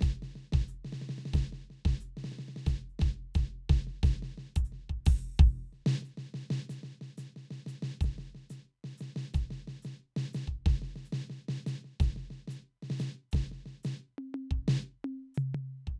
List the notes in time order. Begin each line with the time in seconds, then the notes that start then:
0.01 kick, snare, hi-hat pedal
0.22 snare, hi-hat pedal
0.36 snare
0.53 kick, snare
0.68 hi-hat pedal
0.85 snare
0.93 snare
1.02 snare
1.09 snare
1.18 snare
1.26 snare
1.33 kick, snare, hi-hat pedal
1.53 snare
1.70 snare
1.85 kick, snare
2.00 hi-hat pedal
2.17 snare
2.24 snare, hi-hat pedal
2.32 snare
2.39 snare
2.48 snare
2.56 snare
2.66 kick, snare, hi-hat pedal
2.89 hi-hat pedal
2.99 kick, snare
3.34 kick, snare, hi-hat pedal
3.70 kick, snare
3.87 snare
4.03 kick, snare, hi-hat pedal
4.23 snare
4.38 snare
4.56 kick, open hi-hat
4.65 hi-hat pedal
4.72 snare
4.90 kick
5.06 open hi-hat, kick, snare
5.39 kick
5.73 snare
5.86 snare
6.03 snare, hi-hat pedal
6.18 snare
6.34 snare
6.50 snare
6.70 snare, hi-hat pedal
6.83 snare
7.01 snare
7.18 snare, hi-hat pedal
7.36 snare
7.51 snare
7.66 snare, hi-hat pedal
7.83 snare
8.01 kick, snare, hi-hat pedal
8.18 snare
8.23 hi-hat pedal
8.35 snare
8.50 snare, hi-hat pedal
8.84 snare
8.98 snare, hi-hat pedal
9.16 snare
9.34 kick, snare, hi-hat pedal
9.51 snare
9.68 snare
9.82 snare, hi-hat pedal
10.17 snare
10.33 snare, hi-hat pedal
10.48 kick
10.66 kick, snare
10.82 snare
10.96 snare
11.05 hi-hat pedal
11.13 snare
11.30 snare
11.49 snare
11.67 snare, hi-hat pedal
11.84 snare
12.00 kick, snare, hi-hat pedal
12.16 snare
12.30 snare
12.48 snare, hi-hat pedal
12.83 snare
12.90 snare
12.99 snare, hi-hat pedal
13.32 kick, snare, hi-hat pedal
13.52 snare
13.66 snare
13.83 snare, hi-hat pedal
14.18 high tom
14.34 high tom
14.51 kick
14.68 snare
15.04 high tom
15.34 floor tom, hi-hat pedal
15.55 floor tom
15.87 kick